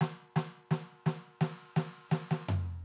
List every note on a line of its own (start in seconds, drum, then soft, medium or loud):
0.01 snare loud
0.37 snare loud
0.71 snare loud
1.07 snare loud
1.42 snare loud
1.77 snare loud
2.10 snare loud
2.10 hi-hat pedal medium
2.32 snare loud
2.49 floor tom loud